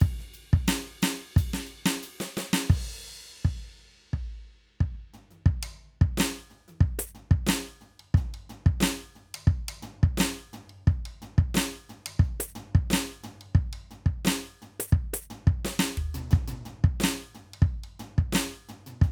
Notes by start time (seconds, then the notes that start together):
0.01 kick, ride
0.20 snare
0.34 ride
0.53 kick, snare
0.68 snare, ride
1.03 snare, ride
1.37 kick, ride
1.54 snare
1.67 ride bell
1.86 snare
2.03 ride
2.21 snare
2.37 snare
2.49 kick
2.54 snare
2.67 kick, snare, crash
3.45 kick
4.14 kick
4.81 kick
4.95 kick
5.14 floor tom
5.31 high tom
5.46 kick
5.63 high tom
6.02 kick
6.18 snare
6.20 snare
6.51 floor tom
6.68 high tom
6.81 kick
6.99 high tom
7.15 floor tom
7.31 kick
7.47 snare
7.49 snare
7.81 floor tom
8.00 high tom
8.15 kick, floor tom
8.34 high tom
8.50 floor tom
8.66 kick
8.81 snare
8.83 snare
9.16 floor tom
9.35 high tom
9.48 kick
9.69 high tom
9.83 floor tom
10.03 kick
10.18 snare
10.21 snare
10.54 floor tom
10.70 high tom
10.88 kick, floor tom
11.06 high tom
11.22 floor tom
11.38 kick
11.55 snare
11.57 snare
11.90 floor tom
12.06 high tom
12.20 kick
12.24 floor tom
12.40 high tom
12.56 floor tom
12.75 kick
12.91 snare
12.94 snare
13.24 floor tom
13.41 high tom
13.55 kick
13.73 high tom
13.91 floor tom
14.06 kick
14.16 kick
14.25 snare
14.28 snare
14.62 floor tom
14.80 high tom
14.93 kick
15.14 high tom
15.31 floor tom
15.47 kick
15.65 snare
15.80 snare
15.98 mid tom
16.15 mid tom
16.31 kick, floor tom
16.48 mid tom
16.66 floor tom
16.84 kick
17.00 snare
17.04 snare
17.35 floor tom
17.54 high tom
17.62 kick
17.84 high tom
18.00 floor tom
18.18 kick
18.29 kick, snare
18.35 snare
18.69 floor tom
18.87 mid tom
19.02 kick, floor tom